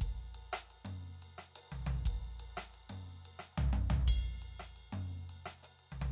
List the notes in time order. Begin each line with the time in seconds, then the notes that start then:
0.01 kick, ride
0.35 ride
0.53 cross-stick, hi-hat pedal
0.70 ride
0.85 mid tom, ride
1.22 ride
1.38 cross-stick
1.55 hi-hat pedal, ride
1.72 floor tom
1.86 floor tom
2.05 kick, ride
2.40 ride
2.56 cross-stick, hi-hat pedal
2.74 ride
2.89 mid tom, ride
3.25 ride
3.39 cross-stick
3.57 floor tom, hi-hat pedal
3.73 mid tom
3.90 floor tom
4.08 kick, ride bell
4.42 ride
4.60 cross-stick, hi-hat pedal
4.76 ride
4.93 mid tom, ride
5.29 ride
5.46 cross-stick
5.63 hi-hat pedal, ride
5.79 ride
5.92 floor tom
6.01 floor tom